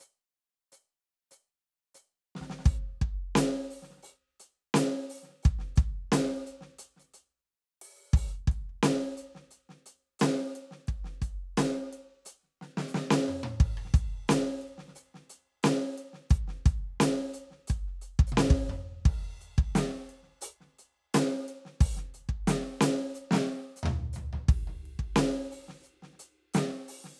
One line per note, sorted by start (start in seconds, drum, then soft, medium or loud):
0.00 hi-hat pedal medium
0.72 hi-hat pedal medium
1.31 hi-hat pedal medium
1.94 hi-hat pedal medium
2.35 snare medium
2.40 kick soft
2.40 snare soft
2.50 snare medium
2.59 snare soft
2.64 open hi-hat medium
2.64 kick loud
2.88 snare soft
3.01 kick loud
3.35 closed hi-hat loud
3.35 snare loud
3.70 open hi-hat medium
3.82 snare soft
3.90 snare soft
3.97 snare soft
4.03 open hi-hat medium
4.07 hi-hat pedal soft
4.40 closed hi-hat medium
4.74 closed hi-hat loud
4.74 snare loud
4.87 snare soft
5.10 open hi-hat medium
5.16 open hi-hat soft
5.23 snare soft
5.28 snare soft
5.32 snare soft
5.43 open hi-hat medium
5.43 kick loud
5.43 hi-hat pedal soft
5.59 snare soft
5.76 closed hi-hat medium
5.76 kick loud
6.12 closed hi-hat loud
6.12 snare loud
6.34 snare soft
6.34 hi-hat pedal soft
6.46 closed hi-hat soft
6.61 snare soft
6.79 open hi-hat medium
6.96 snare soft
6.96 hi-hat pedal soft
7.14 closed hi-hat medium
7.81 open hi-hat medium
8.13 open hi-hat medium
8.13 kick loud
8.47 kick loud
8.47 closed hi-hat soft
8.69 kick soft
8.83 closed hi-hat loud
8.83 snare loud
9.17 closed hi-hat medium
9.35 snare soft
9.51 closed hi-hat soft
9.69 snare soft
9.86 closed hi-hat medium
10.19 closed hi-hat medium
10.19 snare loud
10.55 closed hi-hat medium
10.71 snare soft
10.87 kick medium
10.87 closed hi-hat soft
11.04 snare soft
11.22 closed hi-hat soft
11.22 kick medium
11.57 closed hi-hat loud
11.57 snare loud
11.82 hi-hat pedal soft
11.93 closed hi-hat medium
12.25 closed hi-hat medium
12.25 hi-hat pedal medium
12.43 snare soft
12.61 snare soft
12.77 snare medium
12.88 hi-hat pedal medium
12.94 snare loud
13.11 snare loud
13.11 hi-hat pedal soft
13.28 mid tom medium
13.43 high tom loud
13.60 kick loud
13.60 crash soft
13.77 cross-stick medium
13.85 snare soft
13.94 closed hi-hat medium
13.94 kick loud
14.28 closed hi-hat loud
14.28 snare loud
14.28 hi-hat pedal medium
14.61 closed hi-hat soft
14.68 closed hi-hat soft
14.78 snare soft
14.88 snare soft
14.95 open hi-hat medium
14.95 hi-hat pedal medium
15.14 snare soft
15.30 closed hi-hat medium
15.63 closed hi-hat medium
15.63 snare loud
15.98 closed hi-hat medium
16.13 snare soft
16.30 open hi-hat medium
16.30 kick loud
16.48 snare soft
16.65 closed hi-hat medium
16.65 kick loud
17.00 closed hi-hat loud
17.00 snare loud
17.34 closed hi-hat medium
17.51 snare soft
17.67 closed hi-hat medium
17.67 kick loud
17.87 snare soft
18.01 closed hi-hat medium
18.19 kick loud
18.27 hi-hat pedal medium
18.32 high tom loud
18.37 snare loud
18.50 kick loud
18.69 kick soft
18.69 mid tom medium
19.05 kick loud
19.05 crash soft
19.21 snare soft
19.25 snare soft
19.37 closed hi-hat soft
19.37 hi-hat pedal soft
19.58 kick loud
19.75 closed hi-hat loud
19.75 snare loud
20.09 closed hi-hat soft
20.23 snare soft
20.28 snare soft
20.41 open hi-hat loud
20.41 hi-hat pedal medium
20.60 snare soft
20.66 snare soft
20.79 closed hi-hat soft
21.14 closed hi-hat loud
21.14 snare loud
21.48 open hi-hat medium
21.65 snare soft
21.80 open hi-hat loud
21.80 kick loud
21.95 snare soft
21.95 hi-hat pedal soft
22.14 closed hi-hat soft
22.29 kick medium
22.47 closed hi-hat loud
22.47 snare loud
22.81 closed hi-hat loud
22.81 snare loud
23.14 hi-hat pedal medium
23.31 snare loud
23.33 snare loud
23.76 hi-hat pedal medium
23.83 floor tom loud
23.83 mid tom loud
24.13 floor tom medium
24.13 hi-hat pedal medium
24.18 kick soft
24.33 floor tom medium
24.48 kick loud
24.48 ride medium
24.67 floor tom soft
24.85 ride soft
24.99 kick medium
25.16 snare loud
25.16 ride medium
25.51 open hi-hat medium
25.68 snare soft
25.84 hi-hat pedal soft
26.02 snare soft
26.13 snare soft
26.19 closed hi-hat medium
26.54 closed hi-hat loud
26.54 snare loud
26.88 open hi-hat medium
27.04 snare soft